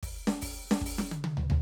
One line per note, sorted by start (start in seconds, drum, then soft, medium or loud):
0.03 open hi-hat loud
0.03 kick medium
0.27 snare medium
0.41 open hi-hat loud
0.41 kick medium
0.71 snare loud
0.81 kick medium
0.85 open hi-hat loud
0.98 snare medium
1.11 hi-hat pedal soft
1.11 high tom loud
1.24 high tom loud
1.37 floor tom loud
1.50 floor tom loud